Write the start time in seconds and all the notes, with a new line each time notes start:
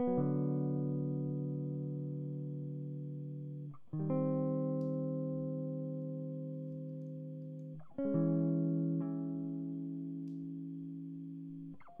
0.00 B3
0.08 F#3
0.18 D3
3.94 D#3
4.00 G3
4.10 C4
7.98 C#4
8.05 G#3
8.15 E3